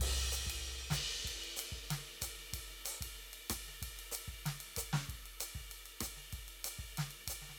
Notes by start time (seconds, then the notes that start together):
0.01 kick, crash, ride
0.32 hi-hat pedal
0.47 kick, ride
0.91 kick, snare, hi-hat pedal, ride
1.25 kick, ride
1.44 ride
1.57 hi-hat pedal, ride
1.72 kick
1.91 snare, ride
2.22 kick, hi-hat pedal, ride
2.38 snare
2.54 kick, ride
2.70 snare
2.86 hi-hat pedal, ride
3.01 kick, ride
3.15 snare
3.34 ride
3.50 kick, cross-stick, hi-hat pedal, ride
3.68 snare
3.82 kick, ride
3.99 ride
4.12 hi-hat pedal, ride
4.28 kick
4.46 snare, ride
4.61 ride
4.77 kick, hi-hat pedal, ride
4.93 snare
5.09 kick, ride
5.26 ride
5.41 hi-hat pedal, ride
5.55 kick, snare
5.72 ride
5.86 ride
6.01 kick, cross-stick, hi-hat pedal, ride
6.17 snare
6.33 kick, ride
6.49 ride
6.65 hi-hat pedal, ride
6.79 kick
6.98 snare, ride
7.11 ride
7.28 kick, hi-hat pedal, ride
7.42 snare
7.49 snare